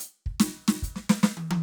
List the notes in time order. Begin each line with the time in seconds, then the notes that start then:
0.00 closed hi-hat
0.26 kick
0.40 closed hi-hat, snare
0.68 snare
0.83 closed hi-hat, kick
0.96 snare
1.10 snare
1.24 snare
1.37 high tom
1.51 high tom